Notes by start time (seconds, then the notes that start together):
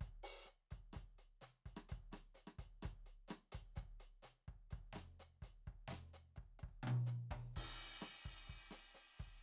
0.01 closed hi-hat, kick
0.07 kick
0.23 open hi-hat
0.46 closed hi-hat, hi-hat pedal
0.71 closed hi-hat, kick
0.77 kick
0.93 closed hi-hat, kick, cross-stick
1.01 kick
1.19 closed hi-hat
1.42 snare, hi-hat pedal
1.66 closed hi-hat, kick, snare
1.76 cross-stick, snare
1.89 closed hi-hat, kick
1.98 kick
2.12 closed hi-hat, cross-stick, snare
2.35 closed hi-hat, snare, hi-hat pedal
2.47 cross-stick, snare
2.59 closed hi-hat, kick
2.64 kick
2.82 closed hi-hat, kick, cross-stick, snare
2.91 kick
3.06 open hi-hat
3.28 closed hi-hat, cross-stick, snare, hi-hat pedal
3.52 closed hi-hat, kick
3.60 kick
3.76 open hi-hat, kick, hi-hat pedal
3.83 kick
4.00 closed hi-hat
4.23 closed hi-hat, snare, hi-hat pedal
4.48 kick, closed hi-hat
4.53 kick
4.71 closed hi-hat, kick
4.78 kick
4.93 closed hi-hat, cross-stick, snare, mid tom
5.20 hi-hat pedal
5.42 closed hi-hat, kick
5.48 kick
5.67 kick, closed hi-hat
5.73 kick
5.88 closed hi-hat, snare, mid tom
5.93 cross-stick
6.14 hi-hat pedal
6.36 kick, closed hi-hat
6.43 kick
6.59 kick, closed hi-hat
6.69 kick
6.83 high tom
6.88 high tom
7.07 hi-hat pedal, high tom
7.31 kick, high tom
7.37 kick
7.53 kick, hi-hat pedal, crash
8.01 closed hi-hat, cross-stick, snare, hi-hat pedal
8.25 kick, closed hi-hat
8.31 kick
8.48 kick, closed hi-hat
8.55 kick
8.71 closed hi-hat, cross-stick
8.95 closed hi-hat, hi-hat pedal
9.19 closed hi-hat, kick
9.25 kick